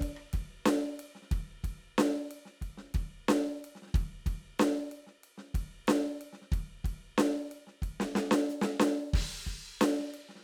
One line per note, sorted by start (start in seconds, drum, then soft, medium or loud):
0.01 kick medium
0.01 ride medium
0.17 cross-stick medium
0.33 kick medium
0.33 ride medium
0.66 snare loud
0.66 ride medium
0.99 ride medium
1.15 snare soft
1.22 snare soft
1.31 kick medium
1.31 ride medium
1.64 kick medium
1.64 ride medium
1.98 snare loud
1.98 ride medium
2.09 snare soft
2.13 snare soft
2.31 ride medium
2.46 snare soft
2.62 kick medium
2.62 ride medium
2.78 snare soft
2.94 kick medium
2.94 ride medium
3.29 snare loud
3.29 ride medium
3.64 ride medium
3.75 snare soft
3.82 snare soft
3.87 snare soft
3.94 kick loud
3.94 ride medium
4.26 kick medium
4.26 ride medium
4.59 snare loud
4.59 ride medium
4.92 ride medium
5.07 snare soft
5.24 ride medium
5.38 snare soft
5.54 kick medium
5.54 ride medium
5.88 snare loud
5.88 ride medium
6.21 ride medium
6.33 snare soft
6.42 snare soft
6.52 kick medium
6.52 ride medium
6.85 kick medium
6.85 ride medium
7.18 snare loud
7.18 ride medium
7.51 ride medium
7.67 snare soft
7.82 kick medium
7.82 ride medium
8.00 snare loud
8.15 snare loud
8.15 hi-hat pedal medium
8.31 snare loud
8.50 hi-hat pedal medium
8.62 snare loud
8.80 snare loud
8.80 hi-hat pedal medium
8.86 snare soft
9.08 snare soft
9.14 kick loud
9.14 crash loud
9.47 kick medium
9.47 ride soft
9.81 snare loud
9.81 ride loud
9.99 snare soft
10.14 ride medium
10.29 snare soft
10.35 snare soft
10.39 snare soft